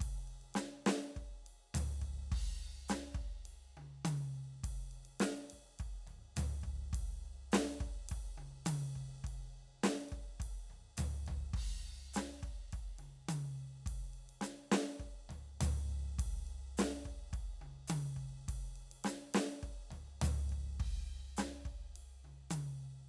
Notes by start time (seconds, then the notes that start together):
0.01 kick, ride
0.28 ride
0.42 ride
0.55 snare, hi-hat pedal, ride
0.87 snare, ride
1.17 kick, ride
1.47 ride
1.75 floor tom, hi-hat pedal, ride
2.02 kick, ride
2.32 kick, crash
2.89 snare, hi-hat pedal, ride
3.15 kick, ride
3.46 ride
3.77 high tom
4.05 hi-hat pedal, high tom, ride
4.64 kick, ride
4.92 ride
5.06 ride
5.20 snare, hi-hat pedal, ride
5.50 kick, ride
5.79 kick, ride
6.07 floor tom, ride
6.37 floor tom, hi-hat pedal, ride
6.62 kick, ride
6.93 kick, ride
7.52 snare, hi-hat pedal, ride
7.81 kick
8.09 kick, ride
8.38 high tom
8.66 hi-hat pedal, high tom, ride
8.96 kick
9.24 kick, ride
9.84 snare, hi-hat pedal, ride
10.09 kick, ride
10.40 kick, ride
10.70 floor tom
10.97 floor tom, hi-hat pedal, ride
11.27 kick, floor tom, ride
11.54 kick, crash
12.14 snare, hi-hat pedal, ride
12.43 kick, ride
12.73 kick, ride
12.99 high tom, ride
13.29 hi-hat pedal, high tom, ride
13.86 kick, ride
14.14 ride
14.30 ride
14.42 snare, hi-hat pedal, ride
14.72 snare, ride
15.00 kick
15.30 floor tom, ride
15.61 floor tom, hi-hat pedal, ride
15.90 ride
16.19 kick, ride
16.47 ride
16.78 snare, hi-hat pedal, ride
17.05 kick, ride
17.33 kick, ride
17.62 high tom
17.88 hi-hat pedal, high tom, ride
18.15 kick, ride
18.49 kick, ride
18.76 ride
18.92 ride
19.05 snare, hi-hat pedal, ride
19.34 snare, ride
19.63 kick, ride
19.91 floor tom, ride
20.22 floor tom, hi-hat pedal, ride
20.50 kick, ride
20.80 kick, crash
21.37 snare, hi-hat pedal, ride
21.66 kick, ride
21.96 ride
22.25 high tom
22.51 hi-hat pedal, high tom, ride